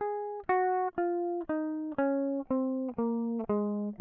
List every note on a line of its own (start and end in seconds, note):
0.01 0.44 G#4
0.49 0.91 F#4
0.98 1.46 F4
1.50 1.96 D#4
1.99 2.44 C#4
2.51 2.94 C4
2.99 3.42 A#3
3.41 3.48 A3
3.50 3.94 G#3